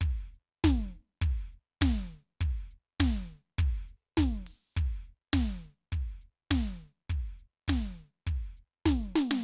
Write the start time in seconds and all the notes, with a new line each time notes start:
0.05 kick
0.34 closed hi-hat
0.64 kick, snare
0.94 closed hi-hat
1.21 kick, closed hi-hat
1.52 closed hi-hat
1.81 kick, snare
2.13 closed hi-hat
2.41 kick, closed hi-hat
2.71 closed hi-hat
3.00 kick, snare, closed hi-hat
3.30 closed hi-hat
3.58 kick, closed hi-hat, crash, ride
3.88 closed hi-hat
4.17 kick, snare
4.46 open hi-hat
4.75 kick, closed hi-hat, hi-hat pedal
5.05 closed hi-hat
5.33 kick, snare
5.64 closed hi-hat
5.92 kick
6.21 closed hi-hat
6.50 kick, snare
6.81 closed hi-hat
7.09 kick
7.39 closed hi-hat
7.68 kick, snare, closed hi-hat
7.98 closed hi-hat
8.27 kick
8.57 closed hi-hat
8.85 kick, snare
9.15 closed hi-hat, snare
9.31 snare